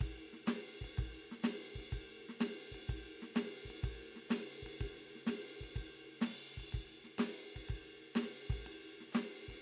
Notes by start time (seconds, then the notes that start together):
0.01 kick, ride
0.33 snare
0.47 snare, hi-hat pedal, ride
0.82 kick, ride
0.98 kick, ride
1.32 snare
1.43 snare, hi-hat pedal, ride
1.76 kick
1.80 ride
1.93 kick, ride
2.29 snare
2.40 snare, hi-hat pedal, ride
2.72 kick, ride
2.89 kick, ride
3.22 snare
3.35 snare, hi-hat pedal, ride
3.65 kick
3.71 ride
3.84 kick, ride
4.16 snare
4.30 snare, hi-hat pedal, ride
4.63 kick, ride
4.81 kick, ride
5.16 snare
5.27 snare, hi-hat pedal, ride
5.61 kick, ride
5.76 kick, ride
6.09 snare
6.21 snare, hi-hat pedal, ride
6.58 kick, ride
6.73 kick, ride
7.04 snare
7.19 snare, hi-hat pedal, ride
7.56 kick, ride
7.66 kick, hi-hat pedal, ride
8.02 snare
8.15 snare, hi-hat pedal, ride
8.22 snare
8.50 kick, ride
8.67 ride
9.01 snare
9.12 snare, hi-hat pedal, ride
9.48 kick, ride